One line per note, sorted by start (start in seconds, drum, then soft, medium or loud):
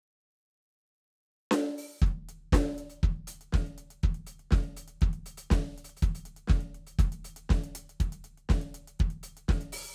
1.51 snare loud
1.66 snare soft
1.70 snare soft
1.78 open hi-hat medium
1.98 kick loud
1.98 hi-hat pedal soft
2.06 closed hi-hat soft
2.29 closed hi-hat medium
2.52 kick loud
2.52 snare loud
2.78 closed hi-hat medium
2.90 closed hi-hat soft
3.03 kick loud
3.03 closed hi-hat soft
3.16 closed hi-hat soft
3.27 closed hi-hat loud
3.41 closed hi-hat medium
3.52 kick loud
3.52 snare medium
3.66 closed hi-hat soft
3.78 kick soft
3.78 closed hi-hat medium
3.90 closed hi-hat medium
4.03 kick loud
4.03 closed hi-hat soft
4.14 closed hi-hat soft
4.24 closed hi-hat medium
4.24 kick soft
4.39 closed hi-hat soft
4.51 kick loud
4.51 snare medium
4.64 closed hi-hat soft
4.77 closed hi-hat medium
4.88 closed hi-hat medium
5.01 kick loud
5.01 closed hi-hat soft
5.13 closed hi-hat soft
5.26 closed hi-hat medium
5.37 closed hi-hat medium
5.50 kick loud
5.50 snare loud
5.64 closed hi-hat soft
5.78 closed hi-hat medium
5.84 closed hi-hat medium
5.89 closed hi-hat soft
5.97 closed hi-hat medium
6.02 kick loud
6.02 closed hi-hat medium
6.15 closed hi-hat medium
6.25 closed hi-hat medium
6.36 closed hi-hat medium
6.47 kick loud
6.47 snare medium
6.61 closed hi-hat soft
6.74 closed hi-hat soft
6.87 closed hi-hat medium
6.99 kick loud
6.99 closed hi-hat medium
7.12 closed hi-hat medium
7.23 closed hi-hat medium
7.23 kick soft
7.36 closed hi-hat medium
7.49 kick loud
7.49 snare loud
7.64 closed hi-hat medium
7.72 kick soft
7.72 closed hi-hat loud
7.89 closed hi-hat medium
8.00 kick loud
8.00 closed hi-hat medium
8.12 closed hi-hat medium
8.24 closed hi-hat medium
8.38 closed hi-hat soft
8.49 kick loud
8.49 snare loud
8.61 closed hi-hat soft
8.74 closed hi-hat medium
8.88 closed hi-hat medium
8.99 kick loud
8.99 closed hi-hat soft
9.10 closed hi-hat soft
9.23 closed hi-hat medium
9.37 closed hi-hat medium
9.48 kick loud
9.48 snare medium
9.61 closed hi-hat medium
9.72 open hi-hat loud
9.87 open hi-hat soft